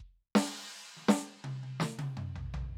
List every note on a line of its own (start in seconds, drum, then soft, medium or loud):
0.00 kick soft
0.35 snare loud
0.35 ride loud
0.96 snare soft
1.01 snare soft
1.04 snare soft
1.08 snare loud
1.44 high tom loud
1.63 high tom medium
1.80 snare loud
1.98 open hi-hat soft
1.98 high tom loud
2.17 mid tom medium
2.35 floor tom medium
2.54 floor tom medium